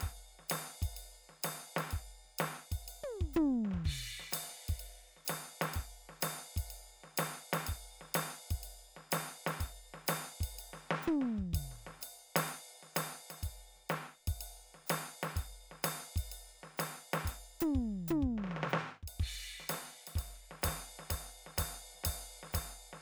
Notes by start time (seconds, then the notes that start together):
0.01 kick, ride
0.39 snare
0.49 snare, hi-hat pedal, ride
0.82 kick, ride
0.94 hi-hat pedal, ride
1.29 snare
1.43 snare, hi-hat pedal, ride
1.77 snare, ride
1.91 kick, ride
2.25 snare
2.38 snare, hi-hat pedal, ride
2.72 kick, ride
2.88 ride
3.04 high tom
3.21 kick
3.33 floor tom, hi-hat pedal
3.65 snare
3.71 kick, snare
3.74 snare
3.77 snare
3.81 snare, crash
3.86 kick
4.20 snare
4.32 snare, hi-hat pedal, ride
4.69 kick, ride
4.79 hi-hat pedal, ride
5.17 snare
5.25 hi-hat pedal, ride
5.30 snare
5.62 snare, ride
5.74 kick, ride
6.09 snare
6.21 snare, hi-hat pedal, ride
6.57 kick, ride
6.71 ride
7.04 snare
7.17 snare, hi-hat pedal, ride
7.53 snare, ride
7.67 kick, ride
8.01 snare
8.15 snare, hi-hat pedal, ride
8.51 kick, ride
8.63 ride
8.97 snare
9.11 snare, hi-hat pedal, ride
9.47 snare, ride
9.60 kick, ride
9.94 snare
10.07 snare, hi-hat pedal, ride
10.41 kick, ride
10.59 ride
10.74 snare
10.91 snare
11.02 hi-hat pedal
11.07 floor tom
11.22 snare
11.38 kick
11.54 kick, ride
11.72 snare
11.87 snare
12.01 hi-hat pedal, ride
12.36 snare, ride
12.48 ride
12.83 snare
12.95 snare, hi-hat pedal, ride
13.30 snare, ride
13.40 kick, hi-hat pedal, ride
13.76 snare
13.90 snare, hi-hat pedal, ride
14.28 kick, ride
14.32 snare
14.38 hi-hat pedal, ride
14.75 snare
14.87 snare, hi-hat pedal, ride
15.23 snare, ride
15.36 kick, ride
15.72 snare
15.83 snare, hi-hat pedal, ride
16.16 kick, ride
16.28 hi-hat pedal, ride
16.64 snare
16.78 snare, hi-hat pedal, ride
17.14 snare, ride
17.25 kick, ride
17.61 open hi-hat, floor tom
17.75 kick
18.08 open hi-hat, floor tom
18.23 kick
18.38 snare
18.44 snare
18.47 snare
18.51 snare
18.57 snare
18.63 snare
18.70 snare, hi-hat pedal
19.03 kick
19.08 ride
19.20 kick, crash
19.60 snare
19.70 snare, hi-hat pedal, ride
19.75 snare
20.07 snare, ride
20.16 kick, snare, ride
20.51 snare
20.62 kick, snare, hi-hat pedal, ride
20.69 snare
20.99 snare
21.09 kick, snare, hi-hat pedal, ride
21.47 snare
21.57 kick, snare, hi-hat pedal, ride
21.95 snare
22.04 kick, snare, ride
22.10 snare
22.43 snare
22.53 kick, snare, hi-hat pedal, ride
22.93 snare